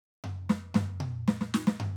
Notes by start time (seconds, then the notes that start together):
0.25 floor tom
0.50 snare
0.75 snare, floor tom
1.01 mid tom
1.28 snare
1.42 snare
1.55 snare
1.68 snare
1.81 floor tom